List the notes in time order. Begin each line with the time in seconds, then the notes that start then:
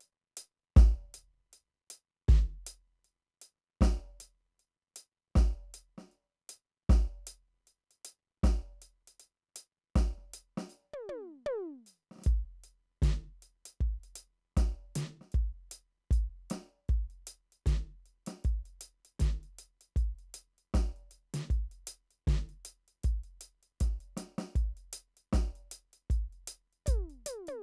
0.01 closed hi-hat
0.38 closed hi-hat
0.77 kick, snare, closed hi-hat
1.15 closed hi-hat
1.54 closed hi-hat
1.91 closed hi-hat
2.29 kick, snare, closed hi-hat
2.67 closed hi-hat
3.05 closed hi-hat
3.42 closed hi-hat
3.82 kick, snare, closed hi-hat
4.21 closed hi-hat
4.60 closed hi-hat
4.97 closed hi-hat
5.36 kick, snare, closed hi-hat
5.75 closed hi-hat
5.99 snare
6.12 closed hi-hat
6.50 closed hi-hat
6.90 kick, snare, closed hi-hat
7.28 closed hi-hat
7.68 closed hi-hat
7.92 closed hi-hat
8.05 closed hi-hat
8.44 kick, snare, closed hi-hat
8.83 closed hi-hat
9.08 closed hi-hat
9.20 closed hi-hat
9.57 closed hi-hat
9.96 kick, snare, closed hi-hat
10.18 snare
10.34 closed hi-hat
10.58 snare
10.70 hi-hat pedal
10.94 high tom
11.09 high tom
11.46 high tom
11.87 hi-hat pedal
12.12 snare
12.16 snare
12.19 snare
12.23 snare, closed hi-hat
12.27 kick
12.64 closed hi-hat
13.03 kick, snare, closed hi-hat
13.43 closed hi-hat
13.66 closed hi-hat
13.81 kick
14.04 closed hi-hat
14.16 closed hi-hat
14.57 kick, snare, closed hi-hat
14.96 closed hi-hat, snare
15.22 snare
15.33 kick, closed hi-hat
15.72 closed hi-hat
16.12 kick, closed hi-hat
16.51 closed hi-hat, snare
16.89 kick, closed hi-hat
17.11 closed hi-hat
17.28 closed hi-hat
17.53 closed hi-hat
17.67 kick, snare, closed hi-hat
18.06 closed hi-hat
18.27 snare, closed hi-hat
18.45 kick, closed hi-hat
18.66 closed hi-hat
18.82 closed hi-hat
19.06 closed hi-hat
19.20 kick, snare, closed hi-hat
19.44 closed hi-hat
19.59 closed hi-hat
19.82 closed hi-hat
19.97 kick, closed hi-hat
20.19 closed hi-hat
20.35 closed hi-hat
20.59 closed hi-hat
20.75 kick, snare, closed hi-hat
20.97 closed hi-hat
21.12 closed hi-hat
21.35 snare, closed hi-hat
21.51 kick, closed hi-hat
21.72 closed hi-hat
21.88 closed hi-hat
22.11 closed hi-hat
22.28 kick, snare, closed hi-hat
22.50 closed hi-hat
22.66 closed hi-hat
22.89 closed hi-hat
23.04 kick, closed hi-hat
23.24 closed hi-hat
23.42 closed hi-hat
23.63 closed hi-hat
23.81 kick, snare, closed hi-hat
24.01 closed hi-hat
24.18 snare, closed hi-hat
24.39 snare, closed hi-hat
24.56 kick, closed hi-hat
24.78 closed hi-hat
24.94 closed hi-hat
25.18 closed hi-hat
25.33 kick, snare, closed hi-hat
25.56 closed hi-hat
25.72 closed hi-hat
25.94 closed hi-hat
26.11 kick, closed hi-hat
26.33 closed hi-hat
26.48 closed hi-hat
26.73 closed hi-hat
26.86 kick, closed hi-hat, high tom
27.10 closed hi-hat
27.27 closed hi-hat, high tom
27.48 closed hi-hat, high tom